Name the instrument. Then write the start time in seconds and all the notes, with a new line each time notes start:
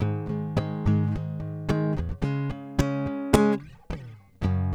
acoustic guitar
0.01 G#2 D#3 G#3
0.27 D#3 G#3
0.58 G#2 D#3 G#3
0.87 G#2 D#3 G#3
1.17 G#2 D#3 G#3
1.41 G#2 D#3
1.70 G#2 D#3 G#3
2.23 C#3 G#3 C#4
2.51 C#3 G#3
2.80 C#3 G#3 C#4
3.08 C#3
3.35 G#3 C#4
4.43 F#2 C#3